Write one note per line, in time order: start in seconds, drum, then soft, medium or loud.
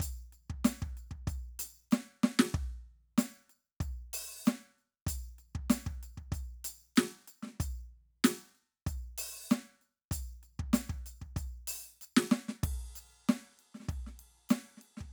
0.01 kick medium
0.01 percussion loud
0.34 percussion soft
0.51 kick medium
0.66 snare loud
0.66 percussion loud
0.83 kick medium
0.98 percussion soft
1.12 kick soft
1.28 kick medium
1.28 percussion medium
1.60 percussion loud
1.92 snare loud
1.92 percussion medium
2.25 snare loud
2.40 snare loud
2.55 kick medium
3.19 snare loud
3.19 percussion loud
3.51 percussion soft
3.81 kick medium
3.81 percussion medium
4.14 percussion loud
4.47 snare loud
4.47 percussion medium
4.49 percussion medium
4.80 percussion soft
5.08 kick medium
5.08 percussion loud
5.40 percussion soft
5.56 kick medium
5.71 snare loud
5.71 percussion loud
5.88 kick medium
6.04 percussion medium
6.19 kick soft
6.33 kick medium
6.33 percussion medium
6.66 percussion loud
6.97 snare loud
6.97 percussion medium
6.99 percussion medium
7.29 percussion medium
7.44 snare medium
7.48 snare soft
7.56 snare soft
7.60 kick medium
7.60 snare soft
7.60 percussion medium
8.25 snare loud
8.25 percussion loud
8.56 percussion soft
8.88 kick medium
8.88 percussion medium
9.19 percussion loud
9.52 snare loud
9.52 percussion medium
9.83 percussion soft
10.12 kick medium
10.12 percussion loud
10.44 percussion soft
10.60 kick medium
10.74 snare loud
10.74 percussion loud
10.91 kick medium
11.07 percussion medium
11.23 kick soft
11.37 kick medium
11.37 percussion medium
11.69 percussion loud
12.02 percussion soft
12.02 percussion medium
12.18 snare loud
12.33 snare loud
12.50 snare medium
12.64 kick loud
12.64 ride loud
12.97 ride soft
12.97 percussion medium
13.30 snare loud
13.30 ride medium
13.60 ride soft
13.76 snare soft
13.81 snare soft
13.84 snare soft
13.87 kick medium
13.87 snare soft
13.87 ride soft
14.08 snare soft
14.20 ride medium
14.50 snare loud
14.50 ride medium
14.50 percussion medium
14.78 snare soft
14.83 ride soft
14.98 kick soft
14.98 snare soft